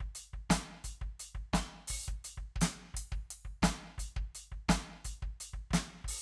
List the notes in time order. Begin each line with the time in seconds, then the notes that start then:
0.01 kick
0.16 closed hi-hat
0.34 kick
0.50 closed hi-hat, kick, snare
0.85 closed hi-hat, kick
1.02 kick
1.20 closed hi-hat
1.35 kick
1.54 closed hi-hat, kick, snare
1.88 open hi-hat, kick
2.05 kick, hi-hat pedal
2.25 closed hi-hat
2.38 kick
2.56 kick
2.62 closed hi-hat, snare
2.95 kick, closed hi-hat
3.13 kick
3.31 closed hi-hat
3.45 kick
3.63 closed hi-hat, kick, snare
3.99 closed hi-hat, kick
4.17 kick
4.35 closed hi-hat
4.52 kick
4.69 closed hi-hat, kick, snare
5.05 closed hi-hat, kick
5.23 kick
5.41 closed hi-hat
5.54 kick
5.71 closed hi-hat, kick, snare
6.05 open hi-hat, kick